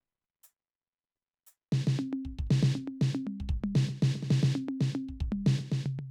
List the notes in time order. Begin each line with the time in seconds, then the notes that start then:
0.43 hi-hat pedal
1.47 hi-hat pedal
1.72 snare
1.87 snare
1.99 high tom
2.13 high tom
2.25 kick
2.39 kick
2.47 kick, snare
2.63 snare
2.75 high tom
2.88 high tom
3.01 snare
3.15 high tom
3.27 mid tom
3.40 kick
3.49 kick
3.64 mid tom
3.75 snare
3.89 snare
4.02 snare
4.15 snare
4.23 snare
4.31 snare
4.43 kick, snare
4.55 high tom
4.69 high tom
4.81 snare
4.95 high tom
5.09 kick
5.20 kick
5.32 mid tom
5.46 snare
5.59 snare
5.72 snare
5.86 floor tom
5.99 floor tom